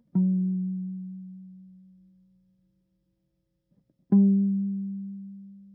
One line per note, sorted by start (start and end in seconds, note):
0.16 1.85 F#3
4.14 5.75 G3